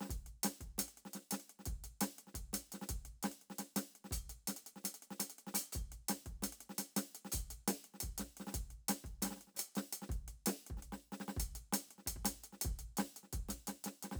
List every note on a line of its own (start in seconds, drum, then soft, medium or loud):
0.01 snare soft
0.04 snare soft
0.10 kick soft
0.10 closed hi-hat medium
0.26 closed hi-hat soft
0.43 snare medium
0.43 closed hi-hat loud
0.61 kick soft
0.61 closed hi-hat soft
0.78 snare soft
0.78 closed hi-hat loud
0.88 closed hi-hat soft
0.97 closed hi-hat soft
1.05 snare soft
1.14 snare soft
1.14 closed hi-hat medium
1.31 snare medium
1.31 closed hi-hat medium
1.40 closed hi-hat soft
1.50 closed hi-hat soft
1.59 snare soft
1.66 kick soft
1.66 closed hi-hat medium
1.84 closed hi-hat medium
2.01 snare medium
2.01 closed hi-hat loud
2.19 closed hi-hat soft
2.27 snare soft
2.35 kick soft
2.35 closed hi-hat medium
2.53 snare soft
2.53 closed hi-hat loud
2.72 snare soft
2.72 closed hi-hat medium
2.82 snare soft
2.89 kick soft
2.89 closed hi-hat medium
3.05 closed hi-hat soft
3.23 snare medium
3.23 closed hi-hat medium
3.32 closed hi-hat soft
3.42 closed hi-hat soft
3.50 snare soft
3.59 snare soft
3.59 closed hi-hat medium
3.76 snare medium
3.76 closed hi-hat medium
3.95 closed hi-hat soft
4.04 snare soft
4.11 closed hi-hat medium
4.11 kick soft
4.30 closed hi-hat medium
4.48 snare soft
4.48 closed hi-hat loud
4.57 closed hi-hat medium
4.66 closed hi-hat medium
4.76 snare soft
4.84 snare soft
4.84 closed hi-hat loud
4.94 closed hi-hat medium
5.02 closed hi-hat soft
5.11 snare soft
5.20 snare soft
5.20 closed hi-hat loud
5.30 closed hi-hat medium
5.39 closed hi-hat soft
5.47 snare soft
5.54 closed hi-hat loud
5.54 snare soft
5.73 closed hi-hat medium
5.73 kick soft
5.92 closed hi-hat soft
6.09 snare medium
6.09 closed hi-hat loud
6.26 kick soft
6.26 closed hi-hat soft
6.43 snare medium
6.43 closed hi-hat loud
6.53 closed hi-hat soft
6.61 closed hi-hat soft
6.70 snare soft
6.78 snare soft
6.78 closed hi-hat loud
6.97 snare medium
6.97 closed hi-hat loud
7.15 closed hi-hat medium
7.25 snare soft
7.32 closed hi-hat loud
7.32 kick soft
7.51 closed hi-hat medium
7.68 snare medium
7.68 closed hi-hat loud
7.84 closed hi-hat soft
7.94 snare soft
8.00 kick soft
8.00 closed hi-hat medium
8.18 snare soft
8.18 closed hi-hat medium
8.37 snare soft
8.37 closed hi-hat soft
8.47 snare soft
8.51 kick soft
8.51 snare soft
8.51 closed hi-hat medium
8.71 closed hi-hat soft
8.89 snare medium
8.89 closed hi-hat loud
9.04 kick soft
9.04 closed hi-hat soft
9.22 snare medium
9.22 closed hi-hat loud
9.25 snare soft
9.31 snare soft
9.36 snare soft
9.41 open hi-hat soft
9.47 snare soft
9.55 snare soft
9.55 hi-hat pedal medium
9.59 closed hi-hat loud
9.76 snare medium
9.76 closed hi-hat medium
9.93 closed hi-hat medium
10.02 snare soft
10.09 kick medium
10.09 closed hi-hat soft
10.28 closed hi-hat soft
10.46 snare medium
10.46 closed hi-hat loud
10.67 kick soft
10.67 closed hi-hat soft
10.77 snare soft
10.83 closed hi-hat soft
10.92 snare soft
11.12 snare soft
11.20 snare soft
11.28 snare soft
11.37 kick medium
11.37 closed hi-hat medium
11.55 closed hi-hat medium
11.73 snare medium
11.73 closed hi-hat loud
11.91 closed hi-hat soft
11.98 snare soft
12.06 kick soft
12.06 closed hi-hat loud
12.16 kick soft
12.25 snare medium
12.25 closed hi-hat loud
12.44 closed hi-hat medium
12.53 snare soft
12.61 kick medium
12.61 closed hi-hat loud
12.79 closed hi-hat medium
12.97 snare medium
12.97 closed hi-hat medium
13.16 closed hi-hat medium
13.23 snare soft
13.33 kick soft
13.33 closed hi-hat medium
13.49 snare soft
13.49 closed hi-hat medium
13.67 snare soft
13.67 closed hi-hat medium
13.84 snare soft
13.84 closed hi-hat medium
14.03 snare soft
14.03 closed hi-hat medium
14.12 kick soft
14.12 snare soft